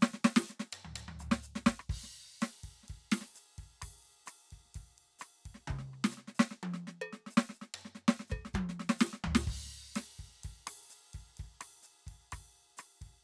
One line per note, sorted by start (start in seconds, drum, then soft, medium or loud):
0.01 snare loud
0.01 hi-hat pedal medium
0.13 snare soft
0.24 snare loud
0.24 hi-hat pedal soft
0.36 snare loud
0.47 snare soft
0.47 hi-hat pedal medium
0.59 snare medium
0.72 hi-hat pedal medium
0.72 floor tom loud
0.85 floor tom soft
0.96 hi-hat pedal medium
0.96 floor tom loud
1.08 floor tom medium
1.19 floor tom soft
1.19 hi-hat pedal medium
1.31 snare loud
1.43 hi-hat pedal medium
1.55 snare medium
1.66 kick soft
1.66 snare loud
1.66 hi-hat pedal medium
1.72 kick soft
1.79 cross-stick medium
1.89 kick medium
1.89 hi-hat pedal soft
1.89 crash medium
2.00 kick soft
2.00 snare soft
2.41 snare medium
2.41 hi-hat pedal loud
2.41 ride medium
2.63 kick soft
2.63 ride medium
2.68 kick soft
2.83 snare soft
2.88 kick soft
2.88 hi-hat pedal soft
2.88 ride soft
3.12 snare loud
3.12 ride loud
3.21 snare soft
3.35 hi-hat pedal medium
3.35 ride soft
3.58 kick soft
3.58 ride soft
3.63 kick soft
3.82 kick soft
3.82 cross-stick medium
3.82 hi-hat pedal soft
3.82 ride loud
3.88 kick soft
4.03 ride soft
4.26 cross-stick medium
4.26 hi-hat pedal medium
4.26 ride medium
4.51 kick soft
4.51 ride soft
4.65 snare soft
4.74 kick soft
4.74 hi-hat pedal soft
4.74 ride medium
4.98 ride soft
5.19 cross-stick medium
5.19 hi-hat pedal medium
5.19 ride medium
5.45 kick soft
5.45 ride soft
5.50 kick soft
5.54 snare soft
5.67 kick soft
5.67 hi-hat pedal soft
5.67 mid tom loud
5.76 kick soft
5.76 snare soft
5.93 cross-stick soft
6.04 snare loud
6.10 snare soft
6.10 hi-hat pedal medium
6.17 snare soft
6.27 snare soft
6.35 hi-hat pedal medium
6.39 snare loud
6.51 snare soft
6.63 high tom loud
6.74 snare soft
6.87 snare soft
7.01 percussion loud
7.13 snare soft
7.26 snare soft
7.30 hi-hat pedal medium
7.37 snare loud
7.49 snare soft
7.49 hi-hat pedal soft
7.61 snare soft
7.74 hi-hat pedal soft
7.74 floor tom loud
7.85 snare soft
8.08 snare loud
8.19 snare soft
8.27 snare soft
8.27 hi-hat pedal soft
8.31 kick soft
8.31 percussion medium
8.41 kick soft
8.41 snare soft
8.53 kick soft
8.53 hi-hat pedal soft
8.53 high tom loud
8.69 snare soft
8.80 snare soft
8.89 snare loud
8.98 snare loud
8.98 hi-hat pedal medium
9.13 snare soft
9.24 kick soft
9.24 floor tom loud
9.31 kick soft
9.35 snare loud
9.44 kick medium
9.44 hi-hat pedal soft
9.48 crash medium
9.54 kick soft
9.66 snare soft
9.95 snare medium
9.95 hi-hat pedal medium
9.95 ride loud
10.15 kick soft
10.15 hi-hat pedal soft
10.24 kick soft
10.28 snare soft
10.42 kick soft
10.42 hi-hat pedal soft
10.42 ride medium
10.50 kick soft
10.67 cross-stick medium
10.67 ride loud
10.89 hi-hat pedal medium
10.89 ride soft
11.13 kick soft
11.13 ride soft
11.20 kick soft
11.37 kick soft
11.37 hi-hat pedal soft
11.37 ride soft
11.45 kick soft
11.61 cross-stick medium
11.61 ride medium
11.82 hi-hat pedal medium
11.82 ride soft
12.07 kick soft
12.07 ride soft
12.12 kick soft
12.31 kick soft
12.31 cross-stick medium
12.31 hi-hat pedal soft
12.31 ride medium
12.38 kick soft
12.77 cross-stick medium
12.77 hi-hat pedal medium
12.77 ride medium
13.01 kick soft
13.01 ride soft
13.06 kick soft